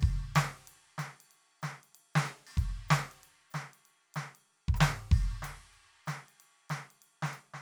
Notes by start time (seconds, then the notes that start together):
0.01 kick, crash
0.36 snare, ride
0.68 ride
0.98 snare, hi-hat pedal, ride
1.21 ride
1.31 ride
1.62 snare, hi-hat pedal, ride
1.83 ride
1.95 ride
2.14 snare, hi-hat pedal
2.26 ride
2.47 crash
2.57 kick, hi-hat pedal, ride
2.88 snare, hi-hat pedal
3.12 ride
3.24 ride
3.51 snare, hi-hat pedal, ride
3.74 ride
3.86 ride
4.14 snare, hi-hat pedal, ride
4.35 ride
4.68 kick
4.74 hi-hat pedal, mid tom
4.81 snare
5.12 kick, crash
5.43 snare, hi-hat pedal, ride
5.73 ride
6.06 snare, hi-hat pedal, ride
6.29 ride
6.40 ride
6.70 snare, hi-hat pedal, ride
6.91 ride
7.02 ride
7.23 snare, hi-hat pedal
7.33 ride
7.54 snare